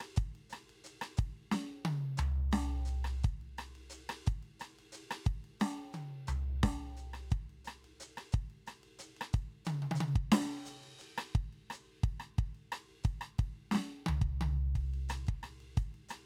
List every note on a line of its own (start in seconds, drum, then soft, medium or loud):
0.01 cross-stick soft
0.01 ride soft
0.17 kick medium
0.17 hi-hat pedal medium
0.17 ride soft
0.36 ride soft
0.50 cross-stick medium
0.50 hi-hat pedal medium
0.50 ride medium
0.70 ride soft
0.85 hi-hat pedal medium
0.85 ride soft
1.02 cross-stick medium
1.02 ride soft
1.18 kick medium
1.18 hi-hat pedal medium
1.18 ride medium
1.52 snare medium
1.85 high tom loud
2.18 floor tom loud
2.18 hi-hat pedal medium
2.52 snare loud
2.52 hi-hat pedal soft
2.52 ride soft
2.86 hi-hat pedal medium
2.90 ride soft
3.05 cross-stick medium
3.05 ride soft
3.24 kick medium
3.24 hi-hat pedal medium
3.24 ride soft
3.42 ride soft
3.58 cross-stick medium
3.58 hi-hat pedal soft
3.58 ride medium
3.76 ride soft
3.90 hi-hat pedal medium
3.90 ride soft
4.10 cross-stick medium
4.10 ride medium
4.27 kick medium
4.27 hi-hat pedal medium
4.27 ride soft
4.43 ride soft
4.60 cross-stick medium
4.60 hi-hat pedal medium
4.60 ride medium
4.79 ride soft
4.93 hi-hat pedal medium
4.93 ride medium
5.11 cross-stick medium
5.11 ride medium
5.26 kick medium
5.26 hi-hat pedal soft
5.26 ride soft
5.45 ride soft
5.60 snare medium
5.60 hi-hat pedal medium
5.93 hi-hat pedal soft
5.93 high tom medium
6.28 floor tom medium
6.28 hi-hat pedal medium
6.64 kick medium
6.64 snare loud
6.64 ride medium
6.97 hi-hat pedal soft
6.97 ride soft
7.14 cross-stick soft
7.14 ride soft
7.31 kick soft
7.31 hi-hat pedal soft
7.31 ride soft
7.50 ride soft
7.65 cross-stick medium
7.65 hi-hat pedal soft
7.65 ride soft
7.85 ride soft
8.01 hi-hat pedal medium
8.01 ride soft
8.18 cross-stick soft
8.18 ride soft
8.33 kick medium
8.33 hi-hat pedal soft
8.33 ride soft
8.51 ride soft
8.67 cross-stick medium
8.67 hi-hat pedal soft
8.67 ride soft
8.84 ride soft
8.99 hi-hat pedal medium
8.99 ride soft
9.17 ride soft
9.22 cross-stick medium
9.34 kick medium
9.34 hi-hat pedal medium
9.34 ride soft
9.65 hi-hat pedal medium
9.65 high tom medium
9.83 high tom medium
9.92 high tom medium
9.96 hi-hat pedal medium
10.01 high tom medium
10.16 kick medium
10.32 snare loud
10.32 crash medium
10.66 hi-hat pedal medium
10.66 ride soft
10.84 ride soft
10.99 hi-hat pedal soft
10.99 ride soft
11.18 cross-stick medium
11.18 ride soft
11.35 kick medium
11.35 ride soft
11.53 ride soft
11.71 cross-stick medium
11.71 hi-hat pedal medium
11.71 ride soft
12.04 kick medium
12.04 ride soft
12.20 cross-stick medium
12.39 kick medium
12.39 ride soft
12.55 ride soft
12.72 cross-stick medium
12.72 hi-hat pedal soft
12.72 ride medium
13.04 kick medium
13.04 hi-hat pedal medium
13.04 ride soft
13.22 cross-stick medium
13.39 kick medium
13.39 hi-hat pedal soft
13.39 ride medium
13.72 snare medium
13.75 snare medium
14.07 floor tom loud
14.07 high tom loud
14.22 kick medium
14.41 floor tom loud
14.41 high tom loud
14.76 kick soft
14.76 ride soft
14.94 ride soft
15.09 cross-stick medium
15.09 hi-hat pedal medium
15.09 ride soft
15.28 kick soft
15.28 ride soft
15.44 cross-stick medium
15.44 ride medium
15.61 ride soft
15.78 kick medium
15.78 hi-hat pedal medium
15.78 ride soft
15.95 ride soft
16.09 cross-stick medium
16.09 hi-hat pedal medium
16.09 ride medium